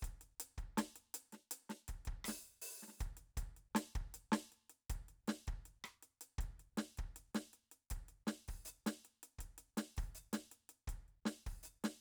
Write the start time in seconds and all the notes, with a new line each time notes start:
0.01 kick, closed hi-hat, hi-hat pedal
0.21 closed hi-hat
0.40 closed hi-hat
0.58 kick, closed hi-hat
0.77 snare, closed hi-hat
0.96 closed hi-hat
1.14 closed hi-hat
1.32 snare, closed hi-hat
1.51 closed hi-hat
1.69 snare, closed hi-hat
1.88 kick, closed hi-hat
2.05 kick, closed hi-hat
2.24 open hi-hat, cross-stick, snare
2.62 open hi-hat
2.82 snare
2.88 snare
2.92 snare
2.97 kick, snare, closed hi-hat, hi-hat pedal
3.17 closed hi-hat
3.37 kick, closed hi-hat
3.56 closed hi-hat
3.75 snare, closed hi-hat
3.95 kick, closed hi-hat
4.14 closed hi-hat
4.32 snare, closed hi-hat
4.52 closed hi-hat
4.70 closed hi-hat
4.90 kick, closed hi-hat
5.08 closed hi-hat
5.28 snare, closed hi-hat
5.47 kick, closed hi-hat
5.65 closed hi-hat
5.84 cross-stick, closed hi-hat
6.03 closed hi-hat
6.21 closed hi-hat
6.38 kick, closed hi-hat
6.59 closed hi-hat
6.77 snare, closed hi-hat
6.97 kick, closed hi-hat
7.16 closed hi-hat
7.35 snare, closed hi-hat
7.53 closed hi-hat
7.71 closed hi-hat
7.90 kick, closed hi-hat
8.08 closed hi-hat
8.27 snare, closed hi-hat
8.48 kick, open hi-hat
8.65 closed hi-hat, hi-hat pedal
8.86 snare, closed hi-hat
9.05 closed hi-hat
9.23 closed hi-hat
9.38 kick, closed hi-hat
9.58 closed hi-hat
9.77 snare, closed hi-hat
9.97 kick, open hi-hat
10.15 hi-hat pedal
10.33 snare, closed hi-hat
10.51 closed hi-hat
10.69 closed hi-hat
10.87 kick, closed hi-hat
11.08 closed hi-hat
11.25 snare, closed hi-hat
11.46 kick, open hi-hat
11.63 closed hi-hat, hi-hat pedal
11.84 snare, closed hi-hat